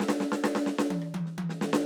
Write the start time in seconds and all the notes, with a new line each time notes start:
0.00 snare
0.08 snare
0.20 snare
0.32 snare
0.44 snare
0.55 snare
0.66 snare
0.78 snare
0.90 high tom
1.02 cross-stick
1.14 high tom
1.26 snare
1.38 high tom
1.49 snare
1.61 snare
1.73 snare